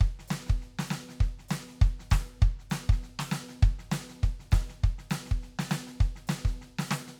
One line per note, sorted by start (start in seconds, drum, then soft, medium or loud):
0.01 kick loud
0.01 snare soft
0.19 kick soft
0.19 snare soft
0.28 snare loud
0.28 hi-hat pedal medium
0.47 kick loud
0.47 snare soft
0.62 snare soft
0.79 snare loud
0.87 hi-hat pedal medium
0.91 snare loud
1.09 snare soft
1.21 kick loud
1.21 snare soft
1.39 snare soft
1.49 snare loud
1.49 hi-hat pedal medium
1.69 snare soft
1.82 kick loud
1.82 snare soft
2.00 snare soft
2.11 kick loud
2.11 snare loud
2.11 hi-hat pedal medium
2.41 kick loud
2.41 snare soft
2.59 snare soft
2.70 snare loud
2.70 hi-hat pedal medium
2.89 kick loud
2.89 snare soft
3.03 snare soft
3.19 snare loud
3.29 snare loud
3.29 hi-hat pedal medium
3.49 snare soft
3.63 kick loud
3.63 snare soft
3.79 snare soft
3.91 snare loud
3.91 hi-hat pedal medium
4.09 snare soft
4.23 kick medium
4.23 snare soft
4.40 snare soft
4.51 kick loud
4.51 snare loud
4.51 hi-hat pedal medium
4.69 snare soft
4.83 kick loud
4.83 snare soft
4.99 snare soft
5.10 snare loud
5.10 hi-hat pedal medium
5.26 snare soft
5.31 kick medium
5.43 snare soft
5.59 snare loud
5.70 snare loud
5.70 hi-hat pedal medium
5.87 snare soft
6.01 kick loud
6.01 snare soft
6.16 snare soft
6.27 snare loud
6.27 hi-hat pedal medium
6.45 kick medium
6.45 snare soft
6.62 snare soft
6.79 snare loud
6.87 hi-hat pedal medium
6.91 snare loud
7.07 snare medium